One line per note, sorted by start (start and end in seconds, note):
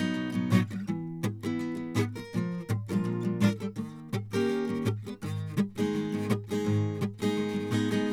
0.00 0.14 B2
0.00 0.17 F#3
0.00 0.31 B3
0.00 0.31 D#4
0.16 0.34 B2
0.16 0.34 F#3
0.31 0.53 B3
0.31 0.53 D#4
0.36 0.51 B2
0.36 0.51 F#3
0.52 0.72 A#2
0.52 0.67 F#3
0.52 0.67 B3
0.52 0.68 D#4
0.89 1.30 E3
0.89 1.22 B3
1.47 1.95 E3
1.47 1.60 B3
1.47 1.62 E4
1.60 1.78 B3
1.60 1.76 E4
1.76 1.96 B3
1.76 1.97 E4
1.96 2.08 E3
1.96 2.10 B3
1.96 2.10 E4
2.16 2.80 A#4
2.36 2.66 F3
2.90 3.22 D4
2.90 3.43 F4
2.90 3.43 A#4
2.94 3.05 A#2
2.94 3.06 F3
3.06 3.26 A#2
3.06 3.26 F3
3.22 3.40 F3
3.22 3.41 D4
3.27 3.53 A#2
3.42 3.57 F3
3.42 3.57 D4
3.42 3.56 F4
3.42 3.57 A#4
3.61 3.73 A4
3.77 4.18 D#3
3.77 3.90 A3
4.34 4.69 D#3
4.34 4.50 A#3
4.34 4.50 C#4
4.34 4.66 G4
4.34 4.83 A#4
4.51 4.70 A#3
4.51 4.69 C#4
4.66 4.86 C#4
4.66 4.94 G4
4.71 4.94 D#3
4.71 4.97 A#3
4.87 4.97 C#4
5.22 5.61 G#2
5.22 5.54 D#3
5.77 5.94 G#3
5.77 5.95 A#3
5.77 6.42 D#4
5.77 6.43 G#4
5.82 5.93 D#3
5.95 6.15 D#3
5.95 6.13 G#3
5.95 6.10 B3
6.11 6.39 G#3
6.11 6.29 B3
6.15 6.38 G#2
6.15 6.37 D#3
6.31 6.41 B3
6.50 6.66 G#3
6.50 7.00 D#4
6.50 7.01 G#4
6.55 6.67 D#3
6.66 7.06 G#2
6.66 7.08 D#3
7.23 7.38 G#3
7.23 7.35 B3
7.23 7.50 D#4
7.23 7.74 G#4
7.37 7.48 D#3
7.37 7.55 G#3
7.37 7.50 B3
7.50 7.72 B3
7.50 7.73 D#4
7.55 8.12 G#2
7.55 7.90 D#3
7.55 7.72 G#3
7.72 7.94 G#3
7.72 7.92 B3
7.72 7.91 D#4
7.72 7.92 G#4
7.93 8.07 D3
7.93 8.12 G#3
7.93 8.12 B3
7.93 8.12 D#4
7.93 8.12 G#4